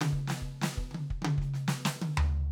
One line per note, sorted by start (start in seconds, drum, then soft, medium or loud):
0.01 snare medium
0.01 high tom loud
0.13 kick soft
0.28 snare medium
0.30 snare loud
0.42 kick soft
0.61 snare loud
0.63 snare loud
0.77 kick medium
0.91 high tom medium
0.94 high tom loud
1.10 kick soft
1.22 high tom loud
1.25 high tom loud
1.38 kick soft
1.38 snare soft
1.54 snare soft
1.68 snare loud
1.85 snare loud
2.02 high tom loud
2.17 floor tom loud